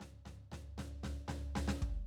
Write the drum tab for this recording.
SD |o-o-o-o-o-o-oo--|
FT |o-o-o-o-o-o-oo--|
BD |--------------o-|